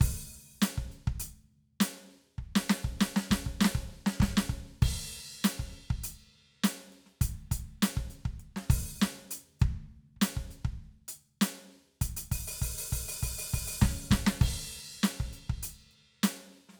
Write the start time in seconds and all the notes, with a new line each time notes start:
0.01 open hi-hat, kick
0.55 kick
0.61 closed hi-hat, snare, hi-hat pedal
0.78 kick
0.92 closed hi-hat
1.07 kick
1.20 closed hi-hat
1.80 closed hi-hat, snare
2.38 kick
2.43 ride
2.56 snare
2.69 snare, hi-hat pedal
2.85 kick
3.00 snare, hi-hat pedal
3.16 snare
3.31 kick, snare
3.46 kick
3.61 snare, hi-hat pedal
3.65 snare
3.75 kick
3.87 hi-hat pedal
4.06 snare
4.20 kick, snare
4.37 snare
4.50 kick, snare
4.79 kick
4.82 kick, crash
5.43 closed hi-hat, kick, snare
5.59 kick
5.74 closed hi-hat
5.90 kick
6.04 closed hi-hat
6.64 closed hi-hat, snare
6.92 closed hi-hat
7.06 snare
7.21 closed hi-hat, kick
7.52 closed hi-hat, kick
7.83 closed hi-hat, snare
7.97 kick
8.10 closed hi-hat
8.25 kick, snare
8.30 ride
8.40 closed hi-hat
8.56 snare
8.70 open hi-hat, kick
9.00 snare, hi-hat pedal
9.31 closed hi-hat
9.60 kick, hi-hat pedal
10.17 kick
10.22 closed hi-hat, snare
10.37 kick
10.51 closed hi-hat
10.65 kick, crash
11.08 closed hi-hat
11.41 closed hi-hat, snare
12.01 closed hi-hat, kick
12.17 closed hi-hat
12.32 open hi-hat, kick
12.47 open hi-hat
12.62 open hi-hat, kick
12.78 open hi-hat
12.93 open hi-hat, kick
13.08 open hi-hat
13.23 open hi-hat, kick
13.38 open hi-hat
13.54 open hi-hat, kick
13.67 open hi-hat
13.82 kick, snare
14.11 kick, snare
14.27 snare
14.41 kick, hi-hat pedal, crash
14.97 kick
15.03 closed hi-hat, snare
15.20 kick
15.33 closed hi-hat
15.50 kick
15.63 closed hi-hat
15.91 closed hi-hat
16.23 closed hi-hat, snare
16.41 snare
16.69 snare
16.72 snare
16.73 snare